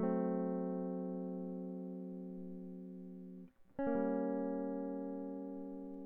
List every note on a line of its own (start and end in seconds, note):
0.00 3.50 F#3
0.00 2.02 A3
0.04 3.48 C4
3.80 6.06 C#4
3.88 6.06 G3
3.88 6.06 A#3